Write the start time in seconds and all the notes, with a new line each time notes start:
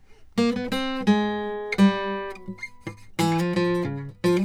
0.39 A#3
0.58 B3
0.73 C4
1.08 G#3
1.80 G3
3.20 E3
3.42 F3
3.59 F3
3.86 C#3
4.25 F3